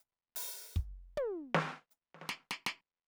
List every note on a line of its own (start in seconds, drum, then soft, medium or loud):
0.00 closed hi-hat soft
0.36 open hi-hat loud
0.73 kick medium
0.73 hi-hat pedal soft
1.17 closed hi-hat soft
1.17 high tom loud
1.54 snare loud
1.91 hi-hat pedal soft
2.14 snare soft
2.21 snare soft
2.29 snare loud
2.51 snare medium
2.66 snare loud